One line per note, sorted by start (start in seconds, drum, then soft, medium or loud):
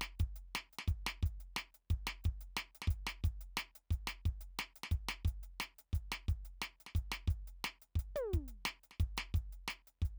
0.01 snare medium
0.01 closed hi-hat medium
0.19 kick medium
0.19 closed hi-hat medium
0.36 closed hi-hat soft
0.55 snare medium
0.55 closed hi-hat soft
0.73 closed hi-hat soft
0.78 snare medium
0.88 kick medium
0.88 closed hi-hat soft
1.06 snare medium
1.06 closed hi-hat soft
1.23 kick medium
1.23 closed hi-hat soft
1.40 closed hi-hat soft
1.56 snare medium
1.56 closed hi-hat soft
1.74 closed hi-hat soft
1.90 kick medium
1.90 closed hi-hat soft
2.07 snare medium
2.07 closed hi-hat soft
2.24 kick medium
2.24 closed hi-hat soft
2.41 closed hi-hat soft
2.57 snare medium
2.57 closed hi-hat medium
2.75 closed hi-hat soft
2.82 snare soft
2.87 kick medium
2.87 closed hi-hat medium
3.07 snare medium
3.07 closed hi-hat soft
3.24 kick medium
3.24 closed hi-hat medium
3.41 closed hi-hat soft
3.57 snare medium
3.57 closed hi-hat medium
3.75 closed hi-hat medium
3.90 kick soft
3.90 closed hi-hat soft
4.07 snare medium
4.07 closed hi-hat medium
4.25 kick medium
4.25 closed hi-hat soft
4.41 closed hi-hat soft
4.59 snare medium
4.59 closed hi-hat medium
4.76 closed hi-hat soft
4.83 snare medium
4.91 kick soft
4.91 closed hi-hat medium
5.08 snare medium
5.08 closed hi-hat soft
5.25 kick medium
5.25 closed hi-hat medium
5.43 closed hi-hat soft
5.60 snare medium
5.60 closed hi-hat medium
5.78 closed hi-hat soft
5.93 kick soft
5.93 closed hi-hat medium
6.12 snare medium
6.12 closed hi-hat medium
6.28 kick medium
6.28 closed hi-hat soft
6.45 closed hi-hat soft
6.62 snare medium
6.62 closed hi-hat medium
6.80 closed hi-hat soft
6.86 snare soft
6.95 kick medium
6.95 closed hi-hat medium
7.12 snare medium
7.12 closed hi-hat soft
7.27 kick medium
7.27 closed hi-hat soft
7.47 closed hi-hat soft
7.64 closed hi-hat medium
7.64 snare medium
7.82 closed hi-hat soft
7.95 kick soft
7.95 closed hi-hat medium
8.15 closed hi-hat medium
8.15 high tom medium
8.33 kick soft
8.33 closed hi-hat medium
8.48 closed hi-hat soft
8.65 closed hi-hat medium
8.65 snare medium
8.83 closed hi-hat soft
8.91 snare soft
9.00 closed hi-hat soft
9.00 kick medium
9.17 snare medium
9.17 closed hi-hat soft
9.34 kick medium
9.34 closed hi-hat soft
9.52 closed hi-hat soft
9.68 snare medium
9.68 closed hi-hat medium
9.87 closed hi-hat soft
10.02 kick soft
10.02 closed hi-hat soft